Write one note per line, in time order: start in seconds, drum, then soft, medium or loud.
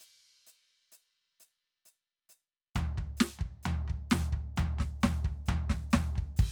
0.01 hi-hat pedal medium
0.47 hi-hat pedal medium
0.92 hi-hat pedal medium
1.40 hi-hat pedal medium
1.86 hi-hat pedal medium
2.29 hi-hat pedal medium
2.75 kick medium
2.75 snare soft
2.75 floor tom loud
2.75 hi-hat pedal medium
2.98 kick medium
2.98 floor tom medium
3.17 snare loud
3.17 hi-hat pedal medium
3.21 floor tom loud
3.39 kick medium
3.39 floor tom medium
3.63 floor tom loud
3.63 hi-hat pedal medium
3.88 kick medium
3.88 floor tom soft
4.10 snare loud
4.10 floor tom loud
4.10 hi-hat pedal medium
4.33 kick medium
4.33 floor tom soft
4.57 kick medium
4.57 floor tom loud
4.57 hi-hat pedal medium
4.79 kick medium
4.79 snare medium
4.79 floor tom medium
5.01 kick soft
5.01 snare loud
5.01 floor tom loud
5.01 hi-hat pedal soft
5.25 kick medium
5.25 floor tom soft
5.46 kick medium
5.46 floor tom loud
5.46 hi-hat pedal medium
5.70 kick medium
5.70 snare medium
5.70 floor tom medium
5.91 snare loud
5.91 floor tom loud
5.91 hi-hat pedal medium
5.95 kick soft
6.16 kick medium
6.16 floor tom soft
6.37 kick loud
6.37 hi-hat pedal medium
6.37 crash medium